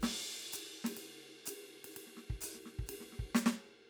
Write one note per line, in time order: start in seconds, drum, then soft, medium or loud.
0.01 snare medium
0.01 hi-hat pedal soft
0.01 ride loud
0.43 snare soft
0.53 hi-hat pedal loud
0.53 ride medium
0.84 snare medium
0.84 ride medium
0.96 hi-hat pedal soft
0.96 ride medium
1.46 hi-hat pedal loud
1.46 ride loud
1.85 ride medium
1.91 hi-hat pedal soft
1.97 ride medium
2.07 snare soft
2.17 snare soft
2.30 kick soft
2.41 hi-hat pedal loud
2.41 ride medium
2.55 snare soft
2.61 hi-hat pedal soft
2.66 snare soft
2.79 kick soft
2.87 hi-hat pedal soft
2.87 ride loud
3.01 snare soft
3.13 snare soft
3.19 kick soft
3.35 snare loud
3.35 hi-hat pedal loud
3.46 snare loud